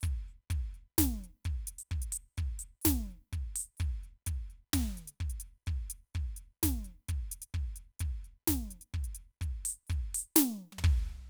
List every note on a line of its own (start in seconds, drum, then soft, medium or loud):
0.01 kick medium
0.01 hi-hat pedal medium
0.05 closed hi-hat soft
0.28 closed hi-hat soft
0.50 kick medium
0.50 closed hi-hat medium
0.74 closed hi-hat soft
0.98 closed hi-hat medium
0.98 kick medium
0.98 snare loud
1.24 closed hi-hat soft
1.45 kick soft
1.45 closed hi-hat soft
1.67 closed hi-hat loud
1.79 closed hi-hat medium
1.91 kick soft
2.02 closed hi-hat medium
2.12 closed hi-hat loud
2.38 kick medium
2.38 closed hi-hat soft
2.59 closed hi-hat medium
2.82 snare medium
2.82 hi-hat pedal medium
2.86 kick medium
2.86 closed hi-hat medium
3.11 closed hi-hat soft
3.33 kick soft
3.33 closed hi-hat soft
3.56 open hi-hat loud
3.77 kick medium
3.77 closed hi-hat soft
3.77 hi-hat pedal soft
4.04 closed hi-hat soft
4.27 kick soft
4.27 closed hi-hat loud
4.50 closed hi-hat soft
4.73 kick medium
4.73 snare medium
4.73 closed hi-hat loud
4.97 closed hi-hat medium
5.08 closed hi-hat medium
5.20 kick soft
5.30 closed hi-hat medium
5.40 closed hi-hat loud
5.66 kick medium
5.66 closed hi-hat soft
5.90 closed hi-hat loud
6.14 kick soft
6.14 closed hi-hat soft
6.37 closed hi-hat medium
6.63 kick medium
6.63 snare medium
6.63 closed hi-hat loud
6.85 closed hi-hat soft
7.09 kick soft
7.09 closed hi-hat medium
7.32 closed hi-hat loud
7.42 closed hi-hat loud
7.54 kick soft
7.76 closed hi-hat medium
8.00 kick soft
8.00 closed hi-hat loud
8.24 closed hi-hat soft
8.48 kick soft
8.48 snare medium
8.48 closed hi-hat medium
8.71 closed hi-hat medium
8.81 closed hi-hat medium
8.94 kick soft
9.04 closed hi-hat medium
9.15 closed hi-hat medium
9.41 kick soft
9.41 closed hi-hat medium
9.65 open hi-hat loud
9.87 kick medium
9.87 hi-hat pedal soft
9.92 closed hi-hat soft
10.15 open hi-hat loud
10.36 snare loud
10.36 hi-hat pedal medium
10.72 high tom soft
10.79 floor tom medium
10.84 kick medium